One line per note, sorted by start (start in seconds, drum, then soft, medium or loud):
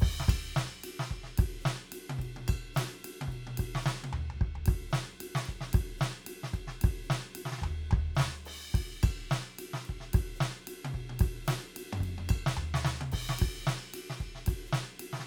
0.01 kick loud
0.01 crash loud
0.20 snare medium
0.29 kick loud
0.29 ride bell loud
0.55 snare loud
0.55 hi-hat pedal medium
0.84 ride loud
1.00 snare loud
1.11 kick medium
1.24 snare medium
1.38 kick loud
1.38 ride loud
1.62 hi-hat pedal medium
1.66 snare loud
1.93 ride loud
2.10 high tom loud
2.19 kick medium
2.19 ride medium
2.37 high tom loud
2.49 kick loud
2.49 ride bell loud
2.75 snare loud
2.75 hi-hat pedal medium
2.75 ride loud
3.05 ride loud
3.22 high tom loud
3.28 kick medium
3.33 ride soft
3.47 high tom loud
3.58 kick medium
3.58 ride loud
3.76 snare loud
3.83 snare loud
3.83 hi-hat pedal medium
4.04 high tom loud
4.13 floor tom loud
4.31 floor tom medium
4.42 kick loud
4.56 floor tom medium
4.66 kick loud
4.66 ride loud
4.91 snare loud
4.91 hi-hat pedal medium
5.21 ride loud
5.36 snare loud
5.46 kick medium
5.46 ride medium
5.61 snare medium
5.74 kick loud
5.74 ride loud
5.98 snare loud
5.98 hi-hat pedal medium
6.27 ride loud
6.44 snare medium
6.54 kick medium
6.54 ride soft
6.68 snare medium
6.82 kick loud
6.82 ride loud
7.05 hi-hat pedal soft
7.11 snare loud
7.36 ride loud
7.46 snare medium
7.52 snare medium
7.59 kick medium
7.59 snare medium
7.64 floor tom loud
7.91 kick loud
7.91 floor tom loud
8.16 snare loud
8.16 hi-hat pedal medium
8.20 snare loud
8.46 crash loud
8.75 kick loud
8.75 ride loud
9.04 kick loud
9.04 ride bell loud
9.31 snare loud
9.31 hi-hat pedal medium
9.59 ride loud
9.74 snare medium
9.86 kick medium
9.86 ride medium
10.01 snare medium
10.14 kick loud
10.14 ride loud
10.36 hi-hat pedal medium
10.41 snare loud
10.68 ride loud
10.85 high tom loud
10.95 kick medium
11.10 high tom medium
11.20 kick loud
11.20 ride loud
11.45 snare loud
11.45 hi-hat pedal medium
11.45 ride loud
11.77 ride loud
11.93 mid tom loud
12.01 kick medium
12.01 ride medium
12.19 mid tom medium
12.30 kick loud
12.30 ride bell loud
12.47 snare loud
12.53 hi-hat pedal medium
12.57 floor tom loud
12.75 snare loud
12.85 snare loud
13.01 high tom loud
13.12 kick medium
13.12 crash loud
13.30 snare loud
13.39 kick loud
13.39 ride loud
13.63 hi-hat pedal medium
13.67 snare loud
13.94 ride loud
14.10 snare medium
14.21 kick medium
14.21 ride soft
14.36 snare medium
14.47 kick loud
14.47 ride loud
14.67 hi-hat pedal medium
14.73 snare loud
15.00 ride loud
15.14 snare medium
15.20 snare medium